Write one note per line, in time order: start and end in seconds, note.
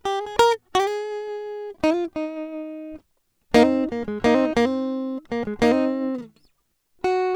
0.07 0.21 G4
0.21 0.32 G#4
0.41 0.60 A#4
0.76 0.87 G4
0.88 1.76 G#4
1.85 2.12 F4
2.17 3.01 D#4
3.56 3.65 A#3
3.56 3.92 D#4
3.65 3.89 C4
3.94 4.09 A#3
4.10 4.22 G#3
4.26 4.36 A#3
4.26 4.55 D#4
4.36 4.49 C4
4.55 4.67 A#3
4.55 4.98 D#4
4.67 5.23 C4
5.33 5.48 A#3
5.45 5.58 G#3
5.63 5.73 A#3
5.63 5.91 D#4
5.73 6.20 C4
7.06 7.35 F#4